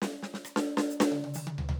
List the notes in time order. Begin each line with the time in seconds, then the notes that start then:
0.02 snare
0.22 snare
0.34 snare
0.45 cross-stick, hi-hat pedal
0.56 snare
0.77 snare
0.90 hi-hat pedal
1.00 snare
1.12 high tom
1.24 high tom
1.34 hi-hat pedal, high tom
1.47 high tom
1.58 floor tom
1.69 floor tom